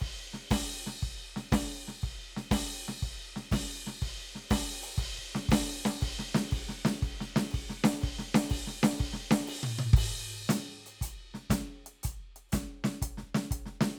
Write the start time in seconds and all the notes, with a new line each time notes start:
0.01 kick, ride
0.34 snare
0.51 kick, snare, hi-hat pedal, crash
0.87 snare
1.02 kick, ride
1.37 snare
1.52 kick, snare, hi-hat pedal, crash
1.88 snare
2.03 kick, ride
2.37 snare
2.52 kick, snare, hi-hat pedal, crash
2.89 snare
3.03 kick, ride
3.37 snare
3.52 kick, snare, hi-hat pedal, crash
3.87 snare
4.03 kick, ride
4.36 snare
4.50 kick, snare, hi-hat pedal, crash
4.83 open hi-hat
4.97 kick, hi-hat pedal, ride
5.19 kick
5.36 snare
5.50 kick, snare, crash
5.86 snare
6.02 kick, hi-hat pedal, ride
6.20 snare
6.35 snare
6.52 kick, hi-hat pedal, crash
6.69 snare
6.86 snare
7.03 kick, hi-hat pedal, ride
7.21 snare
7.37 snare
7.52 kick, hi-hat pedal, crash
7.70 snare
7.85 snare
8.02 kick, hi-hat pedal, ride
8.19 snare
8.35 snare
8.51 kick, hi-hat pedal, crash
8.68 snare
8.84 snare
8.99 kick, hi-hat pedal, ride
9.14 snare
9.21 kick
9.32 snare
9.48 crash
9.64 high tom
9.80 high tom
9.94 kick, crash
10.48 closed hi-hat, snare, hi-hat pedal
10.87 closed hi-hat
11.02 closed hi-hat, kick
11.35 snare
11.51 closed hi-hat, kick, snare
11.87 closed hi-hat
12.04 closed hi-hat, kick
12.37 closed hi-hat
12.50 closed hi-hat, snare, hi-hat pedal
12.54 kick
12.85 snare
13.03 kick, closed hi-hat
13.18 snare
13.24 kick
13.35 snare
13.52 kick, closed hi-hat
13.66 snare
13.82 snare